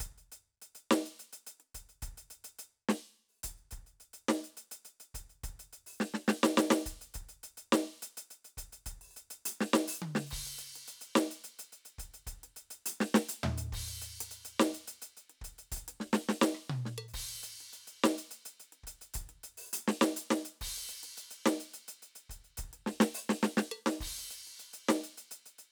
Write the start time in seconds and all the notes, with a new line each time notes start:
0.02 closed hi-hat, kick
0.07 kick
0.11 kick
0.18 closed hi-hat
0.32 closed hi-hat
0.62 closed hi-hat
0.75 closed hi-hat
0.91 snare
1.05 closed hi-hat
1.19 closed hi-hat
1.33 closed hi-hat
1.47 closed hi-hat
1.60 closed hi-hat
1.74 closed hi-hat, kick
1.89 closed hi-hat
2.02 closed hi-hat, kick
2.08 kick
2.17 closed hi-hat
2.30 closed hi-hat
2.44 closed hi-hat
2.59 closed hi-hat
2.89 snare
3.28 open hi-hat
3.43 closed hi-hat, kick
3.49 kick
3.57 closed hi-hat
3.71 closed hi-hat, kick
3.86 closed hi-hat
4.00 closed hi-hat
4.13 closed hi-hat
4.28 snare
4.44 closed hi-hat
4.57 closed hi-hat
4.71 closed hi-hat
4.85 closed hi-hat
5.00 closed hi-hat
5.14 closed hi-hat, kick
5.29 closed hi-hat
5.43 closed hi-hat, kick
5.52 kick
5.59 closed hi-hat
5.73 closed hi-hat
5.86 open hi-hat
6.00 snare
6.14 snare
6.28 snare
6.43 snare
6.57 snare
6.70 snare
6.78 hi-hat pedal
6.86 closed hi-hat, kick
7.01 closed hi-hat
7.14 closed hi-hat, kick
7.29 closed hi-hat
7.43 closed hi-hat
7.57 closed hi-hat
7.72 snare
8.02 closed hi-hat
8.17 closed hi-hat
8.30 closed hi-hat
8.44 closed hi-hat
8.57 closed hi-hat, kick
8.72 closed hi-hat
8.86 closed hi-hat, kick
8.91 kick
9.01 open hi-hat
9.11 open hi-hat
9.16 closed hi-hat
9.30 closed hi-hat
9.45 closed hi-hat
9.61 snare
9.73 snare
9.88 open hi-hat
10.02 high tom
10.15 snare
10.26 hi-hat pedal
10.30 kick, crash
10.46 closed hi-hat
10.58 closed hi-hat
10.75 closed hi-hat
10.88 closed hi-hat
11.01 closed hi-hat
11.15 snare
11.31 closed hi-hat
11.44 closed hi-hat
11.59 closed hi-hat
11.72 closed hi-hat
11.85 closed hi-hat
11.98 closed hi-hat, kick
12.14 closed hi-hat
12.27 closed hi-hat, kick
12.43 closed hi-hat
12.56 closed hi-hat
12.70 closed hi-hat
12.86 closed hi-hat
13.00 snare
13.14 snare
13.29 closed hi-hat
13.43 floor tom
13.58 closed hi-hat
13.72 kick, crash
13.78 kick
13.87 closed hi-hat
14.01 closed hi-hat
14.20 closed hi-hat
14.31 closed hi-hat
14.45 closed hi-hat
14.60 snare
14.74 closed hi-hat
14.87 closed hi-hat
15.02 closed hi-hat
15.17 closed hi-hat
15.30 closed hi-hat
15.41 closed hi-hat, kick
15.58 closed hi-hat
15.72 closed hi-hat, kick
15.76 closed hi-hat
15.88 closed hi-hat
16.00 snare
16.13 snare
16.29 snare
16.41 snare
16.55 cross-stick
16.70 mid tom
16.85 snare
16.98 percussion
17.08 hi-hat pedal
17.14 kick, crash
17.23 kick
17.43 closed hi-hat
17.60 closed hi-hat
17.73 closed hi-hat
17.87 closed hi-hat
18.04 snare
18.18 closed hi-hat
18.31 closed hi-hat
18.45 closed hi-hat
18.60 closed hi-hat
18.72 closed hi-hat
18.83 closed hi-hat, kick
19.01 closed hi-hat
19.14 closed hi-hat, kick
19.21 kick
19.29 closed hi-hat
19.43 closed hi-hat
19.57 open hi-hat
19.67 hi-hat pedal
19.73 closed hi-hat
19.88 snare
20.01 snare
20.16 closed hi-hat
20.30 snare
20.45 closed hi-hat
20.61 kick, crash
20.77 closed hi-hat
20.88 closed hi-hat
21.03 closed hi-hat
21.17 closed hi-hat
21.31 closed hi-hat
21.46 snare
21.60 closed hi-hat
21.73 closed hi-hat
21.88 closed hi-hat
22.02 closed hi-hat
22.15 closed hi-hat
22.29 closed hi-hat, kick
22.44 closed hi-hat
22.57 closed hi-hat, kick
22.64 kick
22.73 closed hi-hat
22.86 snare
23.00 snare
23.14 open hi-hat, hi-hat pedal
23.29 snare
23.43 snare, hi-hat pedal
23.57 snare
23.71 percussion
23.86 snare
24.00 kick, crash
24.09 kick
24.18 closed hi-hat
24.30 closed hi-hat
24.47 closed hi-hat
24.59 closed hi-hat
24.73 closed hi-hat
24.88 snare
25.03 closed hi-hat
25.17 closed hi-hat
25.31 closed hi-hat
25.46 closed hi-hat
25.58 closed hi-hat